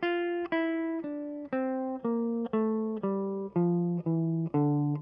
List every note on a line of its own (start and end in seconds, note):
0.03 0.48 F4
0.52 1.04 E4
1.04 1.48 D4
1.53 1.99 C4
2.05 2.50 A#3
2.54 3.01 A3
3.04 3.50 G3
3.57 4.02 F3
4.07 4.50 E3
4.57 4.98 D3